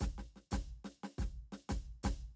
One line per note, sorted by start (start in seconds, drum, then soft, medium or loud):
0.01 kick medium
0.01 snare soft
0.01 hi-hat pedal medium
0.19 snare soft
0.37 snare soft
0.52 kick medium
0.52 snare medium
0.52 hi-hat pedal medium
0.85 snare soft
1.04 snare soft
1.19 kick medium
1.19 snare soft
1.19 hi-hat pedal soft
1.53 snare soft
1.70 kick medium
1.70 snare medium
1.70 hi-hat pedal medium
2.04 kick medium
2.04 snare medium
2.04 hi-hat pedal medium